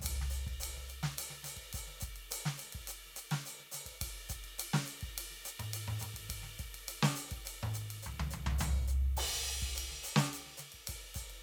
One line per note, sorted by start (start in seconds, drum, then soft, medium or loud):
0.01 kick medium
0.01 snare soft
0.01 hi-hat pedal medium
0.06 ride loud
0.21 snare soft
0.30 hi-hat pedal medium
0.37 ride soft
0.47 kick medium
0.47 ride soft
0.60 hi-hat pedal medium
0.60 ride loud
0.76 snare soft
0.89 hi-hat pedal soft
0.89 ride medium
1.03 snare medium
1.03 ride medium
1.18 hi-hat pedal medium
1.18 ride loud
1.30 snare soft
1.44 snare soft
1.44 hi-hat pedal medium
1.44 ride medium
1.57 kick soft
1.57 ride medium
1.73 kick medium
1.73 hi-hat pedal medium
1.73 ride medium
1.87 snare soft
2.00 kick medium
2.00 hi-hat pedal medium
2.00 ride medium
2.16 ride medium
2.31 hi-hat pedal loud
2.31 ride loud
2.46 snare medium
2.58 hi-hat pedal medium
2.58 ride medium
2.73 kick soft
2.73 ride medium
2.88 hi-hat pedal medium
2.88 ride medium
3.06 snare soft
3.16 hi-hat pedal medium
3.16 ride medium
3.31 snare medium
3.31 ride medium
3.46 hi-hat pedal medium
3.46 ride bell medium
3.60 snare soft
3.72 snare soft
3.72 hi-hat pedal medium
3.72 ride medium
3.86 kick soft
3.86 ride medium
4.01 kick medium
4.01 hi-hat pedal medium
4.01 ride loud
4.29 kick medium
4.29 hi-hat pedal medium
4.29 ride medium
4.44 ride medium
4.59 hi-hat pedal medium
4.59 ride loud
4.74 snare loud
4.85 hi-hat pedal medium
4.85 ride medium
5.01 kick medium
5.01 ride medium
5.18 hi-hat pedal medium
5.18 ride loud
5.31 snare soft
5.45 hi-hat pedal medium
5.45 ride medium
5.60 high tom medium
5.60 ride medium
5.74 hi-hat pedal medium
5.74 ride loud
5.88 high tom medium
5.99 hi-hat pedal medium
5.99 high tom medium
5.99 ride medium
6.14 kick soft
6.14 ride medium
6.29 kick medium
6.29 hi-hat pedal soft
6.29 ride loud
6.43 snare soft
6.59 kick medium
6.59 hi-hat pedal soft
6.59 ride medium
6.75 ride medium
6.88 hi-hat pedal medium
6.88 ride loud
7.03 snare loud
7.15 hi-hat pedal medium
7.15 ride medium
7.31 kick medium
7.31 ride medium
7.45 hi-hat pedal medium
7.45 ride medium
7.63 high tom medium
7.74 kick soft
7.74 hi-hat pedal medium
7.74 ride medium
7.91 ride medium
8.03 floor tom medium
8.03 hi-hat pedal medium
8.20 floor tom loud
8.31 floor tom medium
8.31 hi-hat pedal medium
8.47 floor tom loud
8.59 floor tom loud
8.59 hi-hat pedal medium
8.76 kick soft
8.88 hi-hat pedal medium
9.06 kick soft
9.17 kick soft
9.17 hi-hat pedal medium
9.17 crash loud
9.17 ride medium
9.44 hi-hat pedal medium
9.49 ride soft
9.62 kick medium
9.75 hi-hat pedal medium
9.75 ride loud
9.92 snare soft
10.04 hi-hat pedal medium
10.04 ride soft
10.16 snare loud
10.16 ride soft
10.33 hi-hat pedal medium
10.33 ride medium
10.46 snare soft
10.57 snare soft
10.57 hi-hat pedal medium
10.57 ride medium
10.72 kick soft
10.72 ride medium
10.87 kick soft
10.87 hi-hat pedal medium
10.87 ride loud
11.15 kick medium
11.15 hi-hat pedal medium
11.15 ride medium
11.30 ride medium